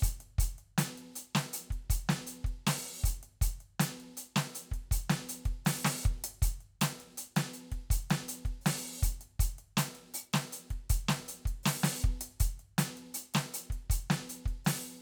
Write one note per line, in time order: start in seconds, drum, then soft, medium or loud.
0.01 closed hi-hat loud
0.01 kick medium
0.01 hi-hat pedal medium
0.21 closed hi-hat soft
0.39 closed hi-hat loud
0.39 kick medium
0.59 closed hi-hat soft
0.78 closed hi-hat loud
0.78 snare loud
0.98 closed hi-hat soft
1.14 closed hi-hat loud
1.14 hi-hat pedal soft
1.35 snare loud
1.35 closed hi-hat soft
1.54 closed hi-hat loud
1.71 kick soft
1.71 closed hi-hat soft
1.90 closed hi-hat loud
1.90 kick medium
2.09 snare loud
2.27 closed hi-hat medium
2.45 kick medium
2.45 closed hi-hat soft
2.67 open hi-hat loud
2.67 snare loud
3.04 closed hi-hat loud
3.04 kick medium
3.04 hi-hat pedal medium
3.23 closed hi-hat soft
3.42 closed hi-hat loud
3.42 kick medium
3.61 closed hi-hat soft
3.80 closed hi-hat loud
3.80 snare loud
4.00 closed hi-hat soft
4.17 closed hi-hat loud
4.36 snare loud
4.36 closed hi-hat medium
4.55 closed hi-hat loud
4.72 kick soft
4.72 closed hi-hat soft
4.92 closed hi-hat loud
4.92 kick medium
5.10 snare loud
5.10 closed hi-hat medium
5.29 closed hi-hat loud
5.46 kick medium
5.46 closed hi-hat soft
5.65 open hi-hat loud
5.65 snare loud
5.65 hi-hat pedal medium
5.85 open hi-hat loud
5.85 snare loud
6.05 kick medium
6.05 hi-hat pedal medium
6.24 closed hi-hat loud
6.43 closed hi-hat loud
6.43 kick medium
6.61 closed hi-hat soft
6.82 closed hi-hat loud
6.82 snare loud
7.01 closed hi-hat soft
7.17 closed hi-hat loud
7.17 hi-hat pedal soft
7.37 snare loud
7.37 closed hi-hat medium
7.54 closed hi-hat medium
7.72 kick soft
7.72 closed hi-hat soft
7.91 closed hi-hat loud
7.91 kick medium
8.10 snare loud
8.10 closed hi-hat medium
8.29 closed hi-hat loud
8.45 kick medium
8.45 closed hi-hat soft
8.62 hi-hat pedal soft
8.66 open hi-hat loud
8.66 snare loud
9.03 closed hi-hat loud
9.03 kick medium
9.03 hi-hat pedal medium
9.21 closed hi-hat medium
9.40 closed hi-hat loud
9.40 kick medium
9.59 closed hi-hat soft
9.78 closed hi-hat loud
9.78 snare loud
9.95 closed hi-hat soft
10.14 open hi-hat loud
10.14 hi-hat pedal soft
10.34 snare loud
10.34 closed hi-hat medium
10.53 closed hi-hat loud
10.71 kick soft
10.71 closed hi-hat soft
10.90 closed hi-hat loud
10.90 kick medium
11.09 snare loud
11.29 closed hi-hat loud
11.46 kick medium
11.46 closed hi-hat medium
11.64 open hi-hat loud
11.64 snare loud
11.64 hi-hat pedal medium
11.84 open hi-hat loud
11.84 snare loud
12.03 kick medium
12.03 hi-hat pedal medium
12.21 closed hi-hat loud
12.40 closed hi-hat loud
12.40 kick medium
12.60 closed hi-hat soft
12.79 closed hi-hat loud
12.79 snare loud
12.98 closed hi-hat soft
13.15 closed hi-hat loud
13.34 snare loud
13.34 closed hi-hat medium
13.54 closed hi-hat loud
13.70 kick soft
13.70 closed hi-hat soft
13.90 closed hi-hat loud
13.90 kick medium
14.10 snare loud
14.10 closed hi-hat soft
14.30 closed hi-hat medium
14.46 kick medium
14.46 closed hi-hat soft
14.65 open hi-hat loud
14.65 snare loud
14.65 hi-hat pedal medium